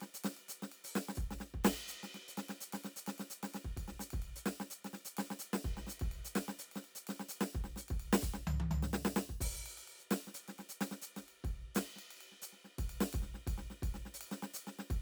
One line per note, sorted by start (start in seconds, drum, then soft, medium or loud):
0.01 snare soft
0.01 ride soft
0.14 hi-hat pedal medium
0.24 snare medium
0.24 ride medium
0.37 ride soft
0.48 hi-hat pedal medium
0.48 ride soft
0.62 snare medium
0.72 ride medium
0.84 hi-hat pedal medium
0.84 ride soft
0.95 snare medium
0.95 ride medium
1.08 snare medium
1.15 kick medium
1.15 hi-hat pedal soft
1.20 ride soft
1.31 snare soft
1.31 ride soft
1.39 snare soft
1.39 ride soft
1.54 kick soft
1.64 snare loud
1.64 ride medium
1.88 hi-hat pedal medium
1.88 ride soft
2.03 snare soft
2.03 ride soft
2.14 snare soft
2.28 hi-hat pedal medium
2.37 snare medium
2.37 ride medium
2.48 snare soft
2.48 ride medium
2.60 hi-hat pedal medium
2.72 snare medium
2.72 ride medium
2.84 snare soft
2.84 ride soft
2.96 hi-hat pedal medium
3.06 snare medium
3.06 ride medium
3.18 snare medium
3.18 ride soft
3.30 hi-hat pedal medium
3.43 snare medium
3.43 ride medium
3.54 snare soft
3.54 ride medium
3.64 kick soft
3.77 kick soft
3.77 ride medium
3.88 snare soft
3.99 snare soft
3.99 hi-hat pedal medium
4.10 kick medium
4.10 ride medium
4.22 ride soft
4.36 hi-hat pedal medium
4.46 snare medium
4.46 ride medium
4.60 snare medium
4.70 hi-hat pedal medium
4.70 ride soft
4.84 snare soft
4.84 ride soft
4.93 snare soft
4.93 ride soft
5.05 hi-hat pedal medium
5.17 snare medium
5.17 ride medium
5.30 snare medium
5.39 hi-hat pedal medium
5.39 ride soft
5.53 snare medium
5.64 kick medium
5.64 ride soft
5.77 snare soft
5.87 snare soft
5.87 hi-hat pedal medium
6.00 kick medium
6.00 ride medium
6.11 ride soft
6.25 hi-hat pedal medium
6.35 snare medium
6.35 ride medium
6.48 snare medium
6.59 hi-hat pedal medium
6.59 ride soft
6.71 ride soft
6.76 snare medium
6.84 ride soft
6.95 hi-hat pedal medium
7.07 snare medium
7.07 ride medium
7.19 snare soft
7.29 hi-hat pedal medium
7.29 ride medium
7.41 snare medium
7.54 kick medium
7.54 ride soft
7.64 snare soft
7.76 snare soft
7.76 hi-hat pedal medium
7.88 kick medium
7.88 ride medium
8.00 ride medium
8.13 snare loud
8.22 kick medium
8.22 hi-hat pedal medium
8.22 ride medium
8.34 snare soft
8.47 floor tom medium
8.60 high tom medium
8.71 floor tom medium
8.83 snare medium
8.93 snare medium
9.05 snare medium
9.16 snare medium
9.29 kick soft
9.40 open hi-hat loud
9.40 kick medium
9.40 ride medium
9.66 ride medium
9.77 ride soft
9.88 ride soft
9.99 hi-hat pedal soft
10.11 snare loud
10.11 ride medium
10.27 snare soft
10.34 hi-hat pedal medium
10.34 ride medium
10.48 snare soft
10.48 ride soft
10.58 snare soft
10.58 ride soft
10.69 hi-hat pedal medium
10.81 snare medium
10.81 ride medium
10.91 snare soft
11.02 hi-hat pedal medium
11.02 ride soft
11.16 kick soft
11.16 snare soft
11.16 ride soft
11.28 ride soft
11.44 kick medium
11.44 ride soft
11.75 snare medium
11.75 hi-hat pedal medium
11.75 ride medium
11.96 snare soft
11.96 ride medium
12.11 ride medium
12.15 hi-hat pedal soft
12.21 ride medium
12.32 snare soft
12.42 hi-hat pedal medium
12.42 ride medium
12.52 snare soft
12.64 snare soft
12.78 kick medium
12.78 ride medium
12.89 ride medium
13.00 snare loud
13.11 kick medium
13.11 hi-hat pedal soft
13.11 ride medium
13.22 snare soft
13.34 snare soft
13.47 kick medium
13.47 ride medium
13.58 snare soft
13.70 snare soft
13.82 kick medium
13.82 ride medium
13.94 snare soft
14.05 snare soft
14.14 hi-hat pedal medium
14.21 ride medium
14.31 snare medium
14.42 snare medium
14.54 hi-hat pedal medium
14.54 ride medium
14.67 snare soft
14.79 snare soft
14.90 kick medium
14.90 ride medium